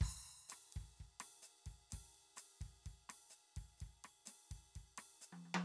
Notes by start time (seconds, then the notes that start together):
0.01 kick, crash
0.12 kick
0.49 cross-stick, hi-hat pedal, ride
0.73 kick, ride
0.81 kick
0.94 hi-hat pedal, ride
1.00 kick
1.20 cross-stick, snare, ride
1.42 hi-hat pedal, ride
1.66 kick, ride
1.90 kick, snare, hi-hat pedal, ride
2.15 ride
2.36 cross-stick, hi-hat pedal, ride
2.61 kick, ride
2.66 kick
2.83 kick, hi-hat pedal, ride
3.09 cross-stick, snare, ride
3.30 hi-hat pedal
3.34 ride
3.56 kick, ride
3.77 hi-hat pedal, ride
3.82 kick
4.04 cross-stick, snare, ride
4.26 snare, hi-hat pedal, ride
4.51 kick, ride
4.76 kick, ride
4.98 cross-stick, snare, ride
5.21 hi-hat pedal
5.33 high tom
5.45 high tom
5.54 high tom